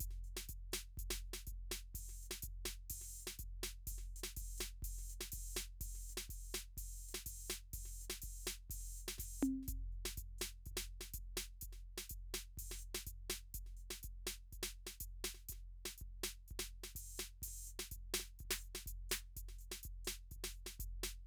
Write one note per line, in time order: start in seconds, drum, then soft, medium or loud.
0.01 closed hi-hat medium
0.01 kick soft
0.11 snare soft
0.24 open hi-hat soft
0.24 hi-hat pedal soft
0.37 snare medium
0.49 closed hi-hat medium
0.49 kick soft
0.73 snare medium
0.73 hi-hat pedal soft
0.98 closed hi-hat medium
0.98 kick soft
1.03 kick soft
1.11 snare medium
1.26 closed hi-hat soft
1.34 snare soft
1.47 closed hi-hat medium
1.47 kick soft
1.53 kick soft
1.72 snare medium
1.95 open hi-hat medium
1.95 kick soft
2.00 kick soft
2.10 snare soft
2.23 hi-hat pedal soft
2.32 snare medium
2.43 closed hi-hat medium
2.43 kick soft
2.49 kick soft
2.66 snare medium
2.90 open hi-hat medium
2.90 kick soft
3.02 snare soft
3.14 open hi-hat soft
3.20 hi-hat pedal soft
3.28 snare medium
3.40 closed hi-hat medium
3.40 kick soft
3.45 kick soft
3.64 snare medium
3.88 open hi-hat medium
3.88 kick soft
3.93 kick soft
3.99 snare soft
4.13 hi-hat pedal medium
4.13 open hi-hat soft
4.24 snare medium
4.37 open hi-hat medium
4.37 kick soft
4.43 kick soft
4.58 snare medium
4.58 hi-hat pedal medium
4.83 open hi-hat medium
4.83 kick soft
4.99 snare soft
5.10 open hi-hat soft
5.10 hi-hat pedal medium
5.21 snare medium
5.33 open hi-hat medium
5.33 kick soft
5.39 kick soft
5.57 snare medium
5.57 hi-hat pedal medium
5.82 open hi-hat medium
5.82 kick soft
5.86 kick soft
5.95 snare soft
6.07 open hi-hat soft
6.07 hi-hat pedal medium
6.18 snare medium
6.30 open hi-hat medium
6.30 kick soft
6.55 snare medium
6.55 hi-hat pedal medium
6.78 open hi-hat medium
6.78 kick soft
7.03 open hi-hat soft
7.09 hi-hat pedal medium
7.15 snare medium
7.27 open hi-hat medium
7.27 kick soft
7.50 snare medium
7.50 hi-hat pedal medium
7.74 open hi-hat medium
7.74 kick soft
7.79 kick soft
7.86 snare soft
7.99 open hi-hat soft
7.99 hi-hat pedal medium
8.10 snare medium
8.22 open hi-hat medium
8.22 kick soft
8.47 snare medium
8.47 hi-hat pedal medium
8.70 open hi-hat medium
8.70 kick soft
8.75 kick soft
8.81 snare soft
8.96 hi-hat pedal soft
8.96 open hi-hat soft
9.09 snare medium
9.19 open hi-hat medium
9.19 kick soft
9.19 snare soft
9.25 kick soft
9.43 hi-hat pedal medium
9.43 high tom loud
9.63 snare soft
9.69 closed hi-hat medium
9.69 kick soft
9.93 closed hi-hat soft
10.06 snare medium
10.18 closed hi-hat medium
10.18 kick soft
10.39 snare medium
10.39 hi-hat pedal soft
10.66 kick soft
10.66 closed hi-hat soft
10.72 kick soft
10.78 snare medium
10.85 hi-hat pedal soft
11.01 snare soft
11.14 closed hi-hat medium
11.14 kick soft
11.20 kick soft
11.38 snare medium
11.62 closed hi-hat medium
11.62 kick soft
11.73 snare soft
11.98 snare medium
12.10 closed hi-hat medium
12.10 kick soft
12.35 snare medium
12.58 open hi-hat medium
12.58 kick soft
12.63 kick soft
12.72 snare soft
12.79 hi-hat pedal medium
12.85 closed hi-hat soft
12.95 snare medium
13.07 closed hi-hat medium
13.07 kick soft
13.30 snare medium
13.55 closed hi-hat medium
13.55 kick soft
13.67 snare soft
13.77 closed hi-hat soft
13.77 hi-hat pedal soft
13.91 snare medium
14.04 closed hi-hat medium
14.04 kick soft
14.27 snare medium
14.53 kick soft
14.53 closed hi-hat soft
14.64 snare medium
14.87 snare soft
15.01 closed hi-hat medium
15.01 kick soft
15.25 snare medium
15.35 snare soft
15.49 closed hi-hat medium
15.49 kick soft
15.49 snare soft
15.86 snare medium
15.98 kick soft
15.98 closed hi-hat medium
16.24 snare medium
16.24 hi-hat pedal medium
16.48 kick soft
16.48 closed hi-hat soft
16.60 snare medium
16.84 snare soft
16.96 open hi-hat medium
16.96 kick soft
17.18 snare medium
17.18 hi-hat pedal medium
17.43 open hi-hat medium
17.43 kick soft
17.48 snare soft
17.67 open hi-hat soft
17.67 hi-hat pedal medium
17.80 snare medium
17.92 closed hi-hat medium
17.92 kick soft
17.97 kick soft
18.15 snare medium
18.15 hi-hat pedal soft
18.20 snare soft
18.40 kick soft
18.40 closed hi-hat soft
18.46 kick soft
18.51 snare medium
18.59 hi-hat pedal medium
18.64 closed hi-hat soft
18.76 snare medium
18.87 closed hi-hat medium
18.87 kick soft
18.91 kick soft
19.10 snare medium
19.10 hi-hat pedal soft
19.37 closed hi-hat medium
19.37 kick soft
19.49 snare soft
19.59 closed hi-hat soft
19.59 hi-hat pedal soft
19.72 snare medium
19.84 closed hi-hat medium
19.84 kick soft
20.05 snare medium
20.05 hi-hat pedal soft
20.32 kick soft
20.32 closed hi-hat soft
20.37 kick soft
20.45 snare medium
20.52 hi-hat pedal soft
20.57 closed hi-hat soft
20.67 snare soft
20.80 closed hi-hat medium
20.80 kick soft
20.85 kick soft
21.04 snare medium